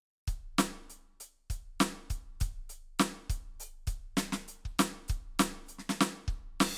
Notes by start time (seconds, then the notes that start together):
0.27 closed hi-hat, kick
0.58 closed hi-hat, snare
0.90 closed hi-hat
1.20 closed hi-hat
1.50 closed hi-hat, kick
1.80 closed hi-hat, snare
2.10 closed hi-hat, kick
2.40 closed hi-hat, kick
2.69 closed hi-hat
2.99 closed hi-hat, snare
3.30 open hi-hat, kick
3.60 open hi-hat, hi-hat pedal
3.87 closed hi-hat, kick
4.17 closed hi-hat, snare, hi-hat pedal
4.32 snare
4.48 closed hi-hat
4.65 kick
4.79 closed hi-hat, snare
5.08 closed hi-hat, kick
5.39 closed hi-hat, snare
5.66 closed hi-hat, hi-hat pedal
5.79 snare
5.89 snare
6.01 snare
6.28 kick
6.60 snare, crash